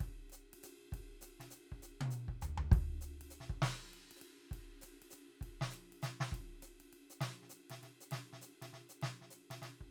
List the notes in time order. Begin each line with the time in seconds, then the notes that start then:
0.01 kick, ride
0.30 hi-hat pedal, ride
0.54 ride
0.64 hi-hat pedal, ride
0.79 snare
0.83 snare
0.93 kick, ride
1.11 snare
1.22 hi-hat pedal, ride
1.40 snare, ride
1.51 hi-hat pedal, ride
1.72 kick
1.83 hi-hat pedal, ride
2.01 high tom
2.11 hi-hat pedal, ride
2.29 kick
2.42 floor tom, hi-hat pedal
2.58 floor tom
2.72 kick, ride
3.02 hi-hat pedal, ride
3.22 ride
3.31 hi-hat pedal, ride
3.41 snare
3.50 kick
3.62 snare, crash
3.88 hi-hat pedal
3.94 ride
4.05 snare
4.12 ride
4.17 hi-hat pedal
4.22 ride
4.38 snare
4.45 snare
4.52 kick, ride
4.69 snare
4.82 hi-hat pedal, ride
5.03 ride
5.11 hi-hat pedal, ride
5.29 snare
5.42 kick, ride
5.62 snare
5.71 hi-hat pedal, ride
5.93 ride
6.03 snare, hi-hat pedal, ride
6.21 snare
6.33 kick, ride
6.54 snare
6.63 hi-hat pedal, ride
6.81 ride
6.93 ride
7.11 hi-hat pedal
7.21 snare, ride
7.43 snare
7.50 hi-hat pedal, ride
7.70 snare, ride
7.83 snare, ride
8.01 hi-hat pedal
8.12 snare, ride
8.33 snare
8.42 hi-hat pedal, ride
8.62 snare, hi-hat pedal, ride
8.74 snare, ride
8.90 hi-hat pedal
9.02 snare, ride
9.22 snare
9.31 hi-hat pedal, ride
9.51 snare, ride
9.62 snare, ride
9.81 kick